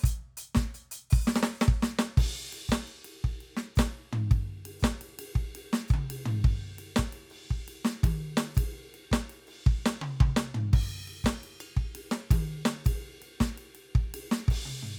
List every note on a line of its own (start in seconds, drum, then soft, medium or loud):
0.01 kick loud
0.01 hi-hat pedal soft
0.06 closed hi-hat loud
0.38 closed hi-hat loud
0.55 kick loud
0.55 snare loud
0.75 closed hi-hat medium
0.92 closed hi-hat loud
1.11 open hi-hat loud
1.11 kick loud
1.28 snare loud
1.36 snare loud
1.43 snare loud
1.62 snare loud
1.69 kick loud
1.83 snare loud
1.99 snare loud
2.18 kick loud
2.18 ride loud
2.53 ride medium
2.70 kick medium
2.70 snare loud
2.70 hi-hat pedal medium
2.88 ride soft
3.05 ride medium
3.25 kick medium
3.41 ride soft
3.57 snare medium
3.57 ride soft
3.76 kick loud
3.76 snare loud
3.76 hi-hat pedal medium
3.76 ride medium
4.14 floor tom loud
4.32 kick loud
4.32 ride medium
4.66 ride loud
4.80 kick medium
4.80 hi-hat pedal medium
4.85 snare loud
5.02 ride medium
5.20 ride loud
5.36 kick loud
5.56 ride loud
5.74 snare loud
5.89 kick loud
5.89 hi-hat pedal medium
5.94 mid tom loud
6.11 ride loud
6.26 floor tom loud
6.45 kick loud
6.45 ride medium
6.79 ride medium
6.97 kick medium
6.97 snare loud
6.97 hi-hat pedal medium
7.13 ride medium
7.31 ride medium
7.49 kick medium
7.49 ride soft
7.69 ride medium
7.85 snare loud
8.04 kick loud
8.04 high tom loud
8.04 ride loud
8.38 snare loud
8.38 ride medium
8.55 kick loud
8.55 hi-hat pedal medium
8.55 ride loud
8.95 ride medium
9.12 kick medium
9.12 snare loud
9.30 ride medium
9.48 ride medium
9.66 kick loud
9.66 ride soft
9.86 snare loud
10.02 mid tom loud
10.21 kick loud
10.21 mid tom loud
10.37 snare loud
10.55 floor tom loud
10.74 kick loud
10.74 crash loud
11.08 ride medium
11.25 kick medium
11.25 snare loud
11.25 hi-hat pedal medium
11.44 ride medium
11.61 ride bell loud
11.77 kick loud
11.96 ride loud
12.12 snare loud
12.31 kick loud
12.31 high tom loud
12.31 ride loud
12.66 snare loud
12.66 ride medium
12.85 kick loud
12.85 hi-hat pedal medium
12.85 ride loud
13.23 ride medium
13.41 kick medium
13.41 snare loud
13.58 ride medium
13.76 ride medium
13.93 kick loud
13.93 ride soft
14.15 ride loud
14.32 snare loud
14.49 kick loud
14.49 ride loud
14.66 mid tom loud
14.83 floor tom medium